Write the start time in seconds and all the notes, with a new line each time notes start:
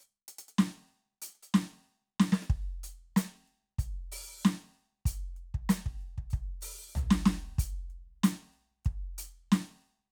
0.01 hi-hat pedal
0.29 closed hi-hat
0.40 closed hi-hat
0.50 closed hi-hat
0.60 snare
1.23 closed hi-hat
1.37 closed hi-hat
1.44 closed hi-hat
1.55 snare
2.21 snare
2.34 snare
2.44 cross-stick
2.51 kick
2.85 closed hi-hat
3.18 closed hi-hat, snare
3.49 closed hi-hat
3.80 closed hi-hat, kick
4.13 open hi-hat
4.46 snare, hi-hat pedal
5.07 closed hi-hat, kick
5.38 closed hi-hat
5.56 kick
5.71 closed hi-hat, snare
5.87 kick
6.02 closed hi-hat
6.19 kick
6.32 closed hi-hat, kick
6.62 open hi-hat, hi-hat pedal
6.97 floor tom, hi-hat pedal
7.12 snare
7.27 snare
7.60 closed hi-hat, kick
7.91 closed hi-hat
8.25 closed hi-hat, snare
8.55 closed hi-hat
8.86 kick, closed hi-hat
9.19 open hi-hat
9.53 snare, hi-hat pedal, open hi-hat